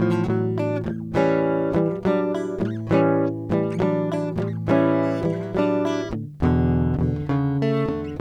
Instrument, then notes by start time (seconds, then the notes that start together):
acoustic guitar
0.01 A2 F3
0.30 A2 F#3
0.61 D4
0.85 A2
1.15 E3 G3 C#4
1.75 E3 G3
2.04 F#3 G3
2.09 D4
2.36 E4
2.60 A2 G3
2.88 A2 E3
2.94 G3 C#4
3.51 A2 E3 G3
3.81 F#3 G3 D4
4.13 D4 E4
4.37 A2
4.42 G3
4.68 E3 G3
4.72 C#4 E4
5.13 E3
5.27 G3
5.56 F#3 G3 D4
5.86 D4 E4
6.13 A2 D3
6.41 E2 B2 D3
7.00 E2 B2 D3
7.31 C#3 D3
7.63 A3
7.92 D3